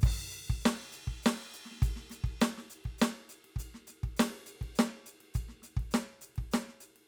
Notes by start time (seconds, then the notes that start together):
0.01 kick, hi-hat pedal
0.05 crash
0.31 hi-hat pedal, ride
0.48 kick, ride
0.61 hi-hat pedal
0.65 snare, crash
0.82 snare
0.92 hi-hat pedal, ride
1.07 kick, ride
1.23 snare, hi-hat pedal, crash
1.43 snare
1.54 hi-hat pedal, ride
1.65 snare
1.71 snare
1.75 snare
1.79 kick, snare, hi-hat pedal
1.83 ride
1.96 snare
2.10 snare, hi-hat pedal, ride
2.24 kick, ride
2.41 snare, hi-hat pedal, ride
2.58 snare
2.70 hi-hat pedal, ride
2.84 kick, ride
2.98 snare, hi-hat pedal, ride bell
3.20 snare
3.29 hi-hat pedal, ride
3.44 ride
3.56 kick, hi-hat pedal
3.60 ride bell
3.74 snare
3.87 snare, hi-hat pedal, ride
4.03 kick, ride
4.17 snare, hi-hat pedal
4.21 ride
4.33 snare
4.46 hi-hat pedal, ride
4.61 kick, ride
4.75 snare, hi-hat pedal, ride bell
4.95 snare
5.06 hi-hat pedal, ride
5.21 ride
5.34 kick, hi-hat pedal, ride bell
5.49 snare
5.62 snare, hi-hat pedal, ride
5.77 kick, ride
5.91 snare, hi-hat pedal, ride bell
6.05 snare
6.21 hi-hat pedal, ride
6.36 kick, ride
6.51 snare, hi-hat pedal, ride bell
6.68 snare
6.80 hi-hat pedal, ride
6.96 ride